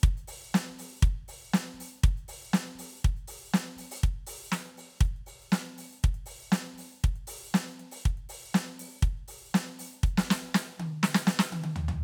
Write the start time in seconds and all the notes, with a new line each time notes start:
0.01 kick, hi-hat pedal
0.06 closed hi-hat
0.17 closed hi-hat
0.28 open hi-hat
0.43 open hi-hat
0.52 snare, hi-hat pedal
0.68 kick, closed hi-hat
0.79 open hi-hat
0.93 open hi-hat
1.01 kick, hi-hat pedal
1.06 closed hi-hat
1.16 closed hi-hat
1.29 open hi-hat
1.43 open hi-hat
1.53 snare, hi-hat pedal
1.69 closed hi-hat
1.74 kick
1.81 open hi-hat
1.96 hi-hat pedal, open hi-hat
2.04 kick, closed hi-hat
2.17 closed hi-hat
2.29 open hi-hat
2.43 open hi-hat
2.53 snare, hi-hat pedal
2.68 closed hi-hat
2.75 kick
2.79 open hi-hat
2.93 open hi-hat
3.00 hi-hat pedal
3.05 kick, closed hi-hat
3.17 closed hi-hat
3.28 open hi-hat
3.42 open hi-hat
3.52 snare, hi-hat pedal
3.66 closed hi-hat
3.76 open hi-hat, kick
3.92 open hi-hat
3.99 hi-hat pedal
4.04 kick, closed hi-hat
4.14 closed hi-hat
4.27 open hi-hat
4.42 open hi-hat
4.50 snare, hi-hat pedal
4.65 closed hi-hat
4.78 open hi-hat
4.93 open hi-hat
4.98 kick, hi-hat pedal
5.05 closed hi-hat
5.17 closed hi-hat
5.27 open hi-hat
5.42 open hi-hat
5.51 snare, hi-hat pedal
5.66 closed hi-hat
5.78 open hi-hat
5.93 open hi-hat
5.99 hi-hat pedal
6.04 kick, closed hi-hat
6.15 closed hi-hat
6.26 open hi-hat
6.41 open hi-hat
6.50 snare, hi-hat pedal
6.67 closed hi-hat
6.74 kick
6.78 open hi-hat
6.92 open hi-hat
7.01 kick, closed hi-hat, hi-hat pedal
7.16 closed hi-hat
7.28 open hi-hat
7.41 open hi-hat
7.53 snare, hi-hat pedal
7.69 closed hi-hat
7.80 closed hi-hat
7.92 open hi-hat
8.02 kick, closed hi-hat, hi-hat pedal
8.18 closed hi-hat
8.29 open hi-hat
8.46 open hi-hat
8.53 snare, hi-hat pedal
8.69 closed hi-hat
8.80 open hi-hat
8.92 open hi-hat
8.99 kick, hi-hat pedal
9.04 closed hi-hat
9.18 closed hi-hat
9.28 open hi-hat
9.42 open hi-hat
9.52 snare, hi-hat pedal
9.67 closed hi-hat
9.79 open hi-hat
9.94 open hi-hat
10.01 kick, hi-hat pedal
10.06 closed hi-hat
10.18 snare
10.31 snare
10.55 snare
10.80 high tom
11.03 snare
11.15 snare
11.27 snare
11.39 snare
11.53 high tom
11.64 high tom
11.76 floor tom
11.89 floor tom